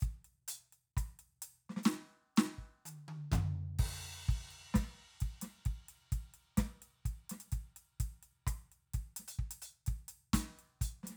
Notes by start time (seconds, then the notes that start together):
0.01 kick, closed hi-hat, hi-hat pedal
0.25 closed hi-hat
0.49 closed hi-hat
0.73 closed hi-hat
0.97 kick, cross-stick, closed hi-hat
1.20 closed hi-hat
1.43 closed hi-hat
1.70 snare
1.77 snare
1.84 snare, hi-hat pedal
2.37 snare, hi-hat pedal
2.59 kick
2.86 hi-hat pedal, high tom
3.09 high tom
3.32 kick, floor tom, hi-hat pedal, high tom
3.79 kick, crash
4.29 kick, closed hi-hat
4.51 closed hi-hat
4.75 kick, snare, closed hi-hat
5.21 kick, closed hi-hat
5.42 snare, closed hi-hat
5.66 kick, closed hi-hat
5.89 closed hi-hat
6.13 kick, closed hi-hat
6.35 closed hi-hat
6.58 kick, snare, closed hi-hat
6.83 closed hi-hat
7.06 kick, closed hi-hat
7.30 snare, closed hi-hat
7.41 closed hi-hat
7.53 kick, closed hi-hat
7.77 closed hi-hat
8.01 kick, closed hi-hat
8.23 closed hi-hat
8.47 kick, cross-stick, closed hi-hat
8.72 closed hi-hat
8.94 kick, closed hi-hat
9.17 snare, closed hi-hat
9.29 closed hi-hat
9.39 kick
9.52 closed hi-hat
9.62 closed hi-hat
9.87 kick, closed hi-hat
10.09 closed hi-hat
10.34 closed hi-hat, kick, snare
10.60 closed hi-hat
10.82 closed hi-hat, kick
11.04 snare
11.08 snare, closed hi-hat
11.10 snare